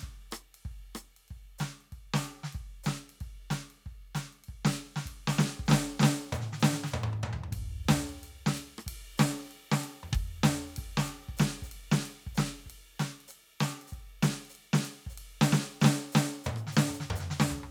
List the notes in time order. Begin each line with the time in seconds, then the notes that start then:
0.01 kick, ride
0.31 cross-stick, hi-hat pedal
0.55 ride
0.65 kick
0.95 cross-stick, hi-hat pedal, ride
1.17 ride
1.28 kick, ride
1.59 snare, hi-hat pedal, ride
1.81 ride
1.92 kick, ride
2.14 snare, hi-hat pedal
2.25 ride
2.44 snare
2.53 kick, ride
2.84 snare, hi-hat pedal, ride
3.10 ride
3.21 kick, ride
3.51 snare, hi-hat pedal, ride
3.70 ride
3.86 kick
4.15 snare, hi-hat pedal, ride
4.33 ride
4.44 ride
4.49 kick
4.65 snare
4.70 hi-hat pedal
4.77 ride
4.96 snare
5.06 kick, ride
5.28 snare
5.32 hi-hat pedal
5.39 snare
5.60 kick
5.66 snare, hi-hat pedal
5.72 snare
6.00 snare
6.03 snare, hi-hat pedal
6.33 hi-hat pedal, high tom
6.41 snare
6.53 snare
6.60 snare, hi-hat pedal
6.73 snare
6.84 snare, hi-hat pedal
6.94 high tom
7.13 mid tom
7.23 high tom
7.33 floor tom
7.44 mid tom
7.53 kick, ride
7.84 hi-hat pedal
7.89 snare, ride
8.10 ride
8.23 hi-hat pedal, ride
8.46 snare
8.54 hi-hat pedal, ride
8.78 cross-stick
8.87 kick, ride
9.18 snare, hi-hat pedal, ride
9.39 ride
9.45 hi-hat pedal
9.51 ride
9.72 snare
9.76 hi-hat pedal
9.84 ride
10.03 mid tom
10.13 kick, ride
10.44 snare, ride
10.77 kick, ride
10.97 snare
11.04 hi-hat pedal
11.08 ride
11.29 kick
11.37 snare, hi-hat pedal, ride
11.62 kick, hi-hat pedal
11.72 ride
11.92 snare
12.06 ride
12.27 kick
12.35 kick, snare, hi-hat pedal, ride
12.66 kick, ride
13.00 snare, hi-hat pedal, ride
13.21 ride
13.28 hi-hat pedal, ride
13.60 snare, hi-hat pedal, ride
13.82 ride
13.88 hi-hat pedal
13.93 kick, ride
14.23 snare, hi-hat pedal, ride
14.45 ride
14.50 hi-hat pedal
14.55 ride
14.73 snare, hi-hat pedal
14.85 ride
15.07 kick, hi-hat pedal
15.18 ride
15.41 snare
15.53 snare
15.81 snare, hi-hat pedal
15.85 snare
16.12 snare, hi-hat pedal
16.44 hi-hat pedal, high tom
16.56 cross-stick
16.67 snare
16.72 hi-hat pedal
16.77 snare
16.90 hi-hat pedal, mid tom
17.00 snare
17.10 mid tom
17.16 hi-hat pedal
17.20 snare
17.31 snare
17.40 snare, hi-hat pedal
17.50 floor tom
17.64 floor tom